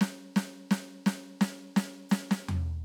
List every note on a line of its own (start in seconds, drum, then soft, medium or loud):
0.01 snare loud
0.36 snare loud
0.71 snare loud
1.07 snare loud
1.41 snare loud
1.77 snare loud
2.10 snare loud
2.10 hi-hat pedal medium
2.31 snare loud
2.49 floor tom loud